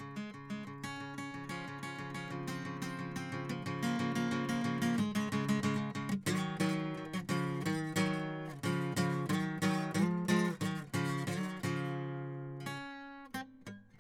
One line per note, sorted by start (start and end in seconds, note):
0.01 0.26 C#3
0.17 0.33 G#3
0.35 0.66 C#3
0.51 0.67 G#3
0.68 1.00 C#3
0.84 1.17 C#4
1.02 1.33 C#3
1.19 1.48 C#4
1.35 1.67 C#3
1.35 1.51 F3
1.50 1.66 F3
1.50 1.81 C#4
1.67 1.98 C#3
1.67 1.84 F3
1.84 2.01 F3
1.84 2.13 C#4
2.00 2.31 C#3
2.00 2.15 F3
2.16 2.33 F3
2.16 2.31 C#4
2.31 2.65 C#3
2.31 2.50 F3
2.31 2.46 C4
2.48 2.66 F3
2.48 2.80 C4
2.66 2.98 C#3
2.66 2.84 F3
2.83 3.02 F3
2.83 3.14 C4
3.00 3.32 C#3
3.00 3.18 F3
3.17 3.33 F3
3.17 3.46 C4
3.33 3.65 C#3
3.33 3.51 F3
3.51 3.66 F3
3.67 4.00 C#3
3.67 3.85 F3
3.84 3.99 F3
3.84 4.14 A#3
4.00 4.32 C#3
4.00 4.17 F3
4.17 4.34 F3
4.17 4.48 A#3
4.33 4.64 C#3
4.33 4.50 F3
4.50 4.67 F3
4.50 4.80 A#3
4.66 4.97 C#3
4.66 4.84 F3
4.83 4.98 F3
4.83 5.04 A#3
4.99 5.11 D#3
4.99 5.14 G#3
5.16 5.31 C#3
5.16 5.33 G#3
5.33 5.50 C#3
5.33 5.48 G#3
5.50 5.63 C#3
5.50 5.63 G#3
5.64 5.78 C#3
5.64 5.94 G#3
5.78 5.94 C#3
5.96 6.18 C#3
6.11 6.19 G#3
6.27 6.60 D#3
6.27 6.60 F#3
6.61 6.97 D#3
6.61 7.08 F#3
6.97 7.19 D#3
7.30 7.37 C#3
7.30 7.66 F3
7.38 7.64 C#3
7.67 7.95 D#3
7.67 7.78 F#3
7.97 8.51 D#3
7.97 8.57 F#3
8.52 8.64 C#3
8.64 8.96 C#3
8.64 8.96 F3
8.98 9.28 C#3
8.98 9.29 F3
9.31 9.62 D#3
9.31 9.61 F#3
9.63 9.94 D#3
9.63 9.94 F#3
9.96 10.28 F3
9.96 10.28 G#3
10.29 10.57 F3
10.29 10.53 G#3
10.62 10.87 D#3
10.62 10.84 F#3
10.95 11.27 C#3
10.95 11.25 F3
11.28 11.41 D3
11.28 11.61 F#3
11.41 11.62 D#3
11.64 12.88 C#3
11.64 12.83 F3
12.67 13.32 C#4
13.35 13.45 C4